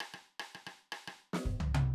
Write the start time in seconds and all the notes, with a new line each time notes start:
0.00 cross-stick
0.14 cross-stick
0.40 cross-stick
0.55 cross-stick
0.67 cross-stick
0.92 cross-stick
1.07 cross-stick
1.33 snare
1.45 kick
1.60 floor tom
1.75 high tom